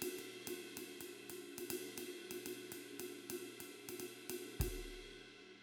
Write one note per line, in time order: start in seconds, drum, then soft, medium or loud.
0.03 ride loud
0.19 ride medium
0.48 ride loud
0.78 ride loud
1.01 ride medium
1.30 ride medium
1.59 ride medium
1.71 ride loud
1.98 ride loud
2.32 ride medium
2.47 ride loud
2.73 ride medium
3.00 ride loud
3.31 ride loud
3.61 ride medium
3.90 ride medium
4.00 ride medium
4.30 ride loud
4.61 kick medium
4.61 ride loud